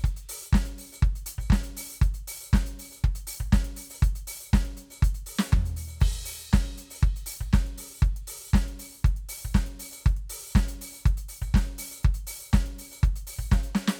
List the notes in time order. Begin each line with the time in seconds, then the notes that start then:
0.01 kick, hi-hat pedal
0.05 closed hi-hat
0.17 closed hi-hat
0.29 open hi-hat
0.41 open hi-hat, hi-hat pedal
0.53 kick, snare
0.65 closed hi-hat
0.78 open hi-hat
0.93 open hi-hat
0.97 hi-hat pedal
1.03 kick, closed hi-hat
1.16 closed hi-hat
1.26 open hi-hat
1.38 open hi-hat, kick
1.49 kick, snare, hi-hat pedal
1.64 closed hi-hat
1.77 open hi-hat
1.89 open hi-hat
1.96 hi-hat pedal
2.02 closed hi-hat, kick
2.14 closed hi-hat
2.28 open hi-hat
2.41 open hi-hat
2.49 hi-hat pedal
2.53 kick, snare
2.66 closed hi-hat
2.79 open hi-hat
2.92 open hi-hat
2.98 hi-hat pedal
3.04 kick, closed hi-hat
3.15 closed hi-hat
3.27 open hi-hat
3.40 kick, open hi-hat
3.53 kick, snare, hi-hat pedal
3.65 closed hi-hat
3.77 open hi-hat
3.90 open hi-hat
3.98 hi-hat pedal
4.03 closed hi-hat, kick
4.16 closed hi-hat
4.28 open hi-hat
4.40 open hi-hat
4.49 hi-hat pedal
4.54 kick, snare
4.65 closed hi-hat
4.77 closed hi-hat
4.91 open hi-hat
4.98 hi-hat pedal
5.03 closed hi-hat, kick
5.15 closed hi-hat
5.27 open hi-hat
5.39 snare
5.48 hi-hat pedal
5.53 kick, floor tom
5.66 closed hi-hat
5.77 open hi-hat
5.87 open hi-hat
5.98 kick, hi-hat pedal, crash
6.12 closed hi-hat
6.26 open hi-hat
6.40 open hi-hat
6.49 hi-hat pedal
6.53 kick, snare
6.65 closed hi-hat
6.78 open hi-hat
6.91 open hi-hat
6.98 hi-hat pedal
7.03 kick, closed hi-hat
7.16 closed hi-hat
7.26 open hi-hat
7.41 kick, open hi-hat
7.51 kick, snare, hi-hat pedal
7.67 closed hi-hat
7.78 open hi-hat
7.91 open hi-hat
7.99 kick, hi-hat pedal
8.05 closed hi-hat
8.17 closed hi-hat
8.28 open hi-hat
8.42 open hi-hat
8.50 kick, hi-hat pedal
8.55 snare
8.69 closed hi-hat
8.79 open hi-hat
8.93 open hi-hat
9.00 hi-hat pedal
9.05 kick, closed hi-hat
9.17 closed hi-hat
9.29 open hi-hat
9.40 open hi-hat
9.45 kick
9.55 kick, snare, hi-hat pedal
9.67 closed hi-hat
9.80 open hi-hat
9.92 open hi-hat
10.03 closed hi-hat, kick, hi-hat pedal
10.17 closed hi-hat
10.30 open hi-hat
10.41 open hi-hat
10.53 kick, snare, hi-hat pedal
10.68 closed hi-hat
10.82 open hi-hat
10.93 open hi-hat
11.01 hi-hat pedal
11.06 kick, closed hi-hat
11.18 closed hi-hat
11.29 open hi-hat
11.41 open hi-hat, kick
11.54 kick, snare, hi-hat pedal
11.66 closed hi-hat
11.79 open hi-hat
11.91 open hi-hat
12.00 closed hi-hat, hi-hat pedal
12.05 kick
12.14 closed hi-hat
12.27 open hi-hat
12.39 open hi-hat
12.50 kick, snare, hi-hat pedal
12.66 closed hi-hat
12.79 open hi-hat
12.91 open hi-hat
12.99 hi-hat pedal
13.03 kick, closed hi-hat
13.16 closed hi-hat
13.27 open hi-hat
13.39 open hi-hat, kick
13.51 kick, snare, hi-hat pedal
13.63 closed hi-hat
13.75 snare
13.88 snare
13.96 hi-hat pedal